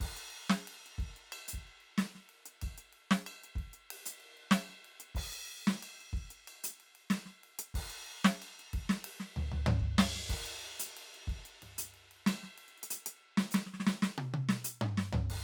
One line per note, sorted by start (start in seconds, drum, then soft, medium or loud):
0.01 kick medium
0.01 crash medium
0.17 closed hi-hat medium
0.31 ride soft
0.50 snare loud
0.68 ride medium
0.87 closed hi-hat soft
0.99 kick medium
0.99 ride soft
1.17 closed hi-hat soft
1.33 ride bell loud
1.49 closed hi-hat loud
1.54 kick soft
1.68 ride soft
1.81 ride soft
1.98 snare loud
1.98 ride medium
2.15 snare soft
2.30 ride soft
2.46 closed hi-hat medium
2.62 kick medium
2.62 ride bell medium
2.78 closed hi-hat medium
2.93 ride soft
3.11 snare loud
3.27 ride bell loud
3.44 closed hi-hat medium
3.56 kick medium
3.56 ride soft
3.74 closed hi-hat medium
3.91 ride loud
4.06 closed hi-hat loud
4.21 ride soft
4.38 ride soft
4.52 snare loud
4.52 ride bell loud
4.70 snare soft
4.85 ride soft
5.01 closed hi-hat medium
5.15 kick medium
5.15 crash loud
5.33 closed hi-hat medium
5.48 ride soft
5.68 snare loud
5.83 ride bell loud
6.01 closed hi-hat soft
6.13 kick medium
6.13 ride soft
6.31 closed hi-hat medium
6.48 ride bell medium
6.64 closed hi-hat loud
6.81 ride soft
6.96 ride medium
7.11 snare loud
7.11 ride bell medium
7.26 snare soft
7.44 ride medium
7.59 closed hi-hat loud
7.75 kick medium
7.75 crash medium
7.90 closed hi-hat medium
8.07 ride bell soft
8.25 snare loud
8.42 ride bell medium
8.60 closed hi-hat soft
8.74 kick medium
8.74 ride medium
8.90 snare loud
9.05 ride loud
9.20 snare medium
9.37 floor tom loud
9.52 floor tom medium
9.67 floor tom loud
9.80 kick medium
9.99 snare loud
9.99 ride loud
10.16 snare soft
10.30 kick medium
10.30 crash medium
10.46 closed hi-hat medium
10.62 ride soft
10.80 closed hi-hat loud
10.97 ride medium
11.15 closed hi-hat soft
11.28 kick medium
11.28 ride soft
11.46 closed hi-hat medium
11.63 cross-stick soft
11.63 ride medium
11.63 floor tom soft
11.79 closed hi-hat loud
11.95 ride soft
12.12 ride medium
12.27 snare loud
12.27 ride bell loud
12.44 snare soft
12.58 ride medium
12.69 closed hi-hat soft
12.78 closed hi-hat soft
12.84 closed hi-hat loud
12.91 closed hi-hat loud
13.07 closed hi-hat loud
13.38 snare loud
13.52 snare loud
13.52 hi-hat pedal loud
13.67 snare soft
13.74 snare medium
13.80 snare medium
13.87 snare loud
14.03 snare loud
14.19 high tom loud
14.34 high tom loud
14.49 snare loud
14.65 closed hi-hat loud
14.82 mid tom loud
14.98 snare loud
15.13 floor tom loud
15.31 kick soft
15.31 crash medium